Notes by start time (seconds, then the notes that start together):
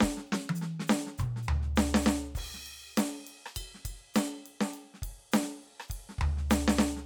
0.01 kick, snare, hi-hat pedal
0.18 snare
0.27 hi-hat pedal
0.33 snare
0.50 high tom
0.56 hi-hat pedal
0.62 snare
0.80 snare
0.88 snare, hi-hat pedal
1.07 snare
1.18 kick, hi-hat pedal, mid tom
1.25 kick
1.28 kick
1.37 snare
1.43 hi-hat pedal
1.49 floor tom
1.62 snare
1.76 snare, hi-hat pedal
1.95 snare
2.02 hi-hat pedal
2.06 snare
2.35 kick, hi-hat pedal, crash
2.42 kick
2.46 kick
2.54 snare
2.60 snare
2.67 snare, ride
2.97 snare, hi-hat pedal, ride
3.27 ride
3.46 cross-stick
3.55 kick, hi-hat pedal, ride bell
3.75 snare
3.85 kick, ride bell
3.92 kick
3.95 kick
4.15 snare, hi-hat pedal, ride bell
4.46 ride
4.61 snare
4.73 hi-hat pedal, ride
4.94 snare
5.03 kick, ride
5.09 kick
5.12 kick
5.32 snare, hi-hat pedal, ride
5.43 snare
5.63 ride
5.80 cross-stick
5.89 kick, hi-hat pedal, ride
5.96 kick
6.00 kick
6.09 snare
6.19 kick, floor tom
6.28 kick
6.38 snare
6.50 snare, hi-hat pedal
6.68 snare
6.79 snare
6.97 snare